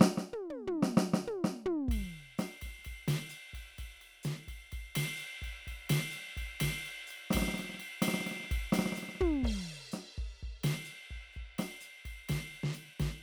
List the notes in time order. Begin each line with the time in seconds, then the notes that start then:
0.01 snare
0.18 snare
0.33 mid tom
0.50 open hi-hat, high tom
0.67 floor tom
0.83 snare
0.97 snare
1.14 snare
1.27 mid tom
1.44 snare
1.65 floor tom
1.88 kick, ride
1.97 snare
2.38 snare, hi-hat pedal, ride
2.62 kick, snare, ride
2.67 kick
2.79 snare
2.83 kick, hi-hat pedal, ride
2.91 kick
3.08 snare, ride
3.19 snare
3.30 snare, hi-hat pedal, ride
3.54 kick, ride
3.58 kick
3.77 kick, hi-hat pedal, ride
3.83 kick
4.01 ride
4.23 snare, hi-hat pedal, ride
4.48 kick, ride
4.71 kick, hi-hat pedal, ride
4.95 snare, ride bell
5.16 hi-hat pedal, ride
5.42 kick, ride
5.47 kick
5.63 hi-hat pedal
5.67 kick, ride
5.72 kick
5.90 snare, ride bell
5.99 snare
6.11 hi-hat pedal, ride
6.16 snare
6.22 snare
6.25 snare
6.29 snare
6.37 kick, ride
6.42 kick
6.59 snare, hi-hat pedal, ride bell
6.63 kick
6.68 kick
6.85 ride
7.07 hi-hat pedal, ride
7.31 kick, snare, ride bell
7.37 kick, snare
7.42 snare
7.48 snare
7.54 snare, ride
7.59 snare
7.65 snare
7.69 snare
7.74 snare
7.79 snare, ride
8.02 snare, hi-hat pedal, ride bell
8.08 snare
8.14 snare
8.21 snare
8.26 snare, ride
8.31 snare
8.36 snare
8.40 snare
8.44 snare
8.49 kick, snare, hi-hat pedal, ride
8.57 kick
8.73 snare, ride
8.79 snare
8.86 snare
8.92 snare, hi-hat pedal
8.98 snare, ride
9.03 snare
9.09 snare
9.15 snare
9.20 kick, floor tom
9.43 kick, crash
9.49 kick
9.92 snare, hi-hat pedal
10.18 kick
10.38 hi-hat pedal
10.43 kick
10.48 kick
10.64 snare, ride
10.74 snare
10.85 hi-hat pedal
10.92 snare
11.11 kick
11.16 kick
11.33 kick, hi-hat pedal
11.41 kick
11.58 snare, ride
11.81 snare, hi-hat pedal, ride
12.05 kick, ride
12.28 kick, snare, hi-hat pedal, ride
12.36 kick
12.54 ride
12.64 snare
12.73 hi-hat pedal, ride
13.00 kick, snare, ride
13.06 kick